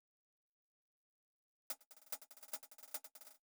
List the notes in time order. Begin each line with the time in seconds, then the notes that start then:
1.70 closed hi-hat
1.81 closed hi-hat
1.91 closed hi-hat
1.97 closed hi-hat
2.02 closed hi-hat
2.06 closed hi-hat
2.10 closed hi-hat
2.12 closed hi-hat
2.22 closed hi-hat
2.31 closed hi-hat
2.37 closed hi-hat
2.41 closed hi-hat
2.43 closed hi-hat
2.48 closed hi-hat
2.52 closed hi-hat
2.53 closed hi-hat
2.63 closed hi-hat
2.71 closed hi-hat
2.78 closed hi-hat
2.83 closed hi-hat
2.88 closed hi-hat
2.91 closed hi-hat
2.94 closed hi-hat
3.04 closed hi-hat
3.15 closed hi-hat
3.21 closed hi-hat
3.25 closed hi-hat
3.27 closed hi-hat
3.31 closed hi-hat
3.34 closed hi-hat